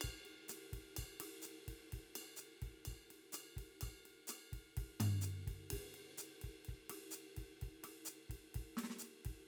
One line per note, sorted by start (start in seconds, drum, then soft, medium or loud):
0.01 kick soft
0.01 ride bell loud
0.09 kick soft
0.25 ride soft
0.48 snare soft
0.48 hi-hat pedal medium
0.48 ride medium
0.73 kick soft
0.73 ride soft
0.78 kick soft
0.97 kick soft
0.97 ride bell medium
1.03 kick soft
1.20 cross-stick soft
1.20 ride medium
1.42 hi-hat pedal medium
1.42 ride soft
1.68 kick soft
1.68 ride medium
1.92 kick soft
1.92 ride soft
1.98 kick soft
2.15 snare soft
2.15 ride bell medium
2.36 hi-hat pedal medium
2.36 ride soft
2.62 kick soft
2.62 ride soft
2.67 kick soft
2.85 kick soft
2.85 snare soft
2.85 ride bell medium
2.93 kick soft
3.10 ride soft
3.20 snare soft
3.32 cross-stick soft
3.32 hi-hat pedal medium
3.32 ride bell medium
3.56 kick soft
3.56 ride soft
3.81 kick soft
3.81 cross-stick soft
3.81 ride bell medium
3.88 kick soft
4.05 ride soft
4.27 cross-stick soft
4.27 snare soft
4.27 hi-hat pedal medium
4.27 ride bell medium
4.52 kick soft
4.52 ride soft
4.77 kick soft
4.77 ride medium
4.83 kick soft
5.00 floor tom loud
5.00 ride bell loud
5.21 hi-hat pedal medium
5.21 ride soft
5.47 kick soft
5.47 ride soft
5.52 kick soft
5.70 kick soft
5.70 ride medium
5.78 kick soft
5.94 ride soft
6.18 hi-hat pedal medium
6.18 ride medium
6.42 kick soft
6.42 ride soft
6.65 kick soft
6.65 ride soft
6.73 kick soft
6.89 cross-stick soft
6.89 snare soft
6.89 ride medium
7.11 hi-hat pedal medium
7.11 ride soft
7.37 kick soft
7.37 ride soft
7.61 kick soft
7.61 ride soft
7.67 kick soft
7.83 cross-stick soft
7.83 snare soft
7.83 ride medium
8.05 hi-hat pedal medium
8.05 ride soft
8.30 kick soft
8.30 ride soft
8.35 kick soft
8.54 kick soft
8.54 ride medium
8.61 kick soft
8.77 snare soft
8.77 ride medium
8.83 snare soft
8.90 snare soft
8.96 snare soft
8.96 hi-hat pedal medium
9.02 snare soft
9.02 ride soft
9.07 snare soft
9.14 snare soft
9.19 snare soft
9.25 kick soft
9.25 ride soft
9.31 kick soft